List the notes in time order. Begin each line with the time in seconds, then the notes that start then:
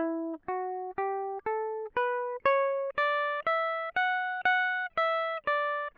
0.00 E4
0.49 F#4
0.99 G4
1.47 A4
1.97 B4
2.46 C#5
2.99 D5
3.47 E5
3.97 F#5
4.46 F#5
4.98 E5
5.48 D5